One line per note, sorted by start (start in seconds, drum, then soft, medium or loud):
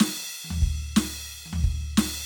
0.01 snare loud
0.01 crash loud
0.45 high tom soft
0.51 floor tom loud
0.62 kick medium
0.97 snare loud
0.97 crash loud
1.46 high tom soft
1.53 floor tom loud
1.64 kick medium
1.98 snare loud
1.98 crash loud
2.05 cross-stick soft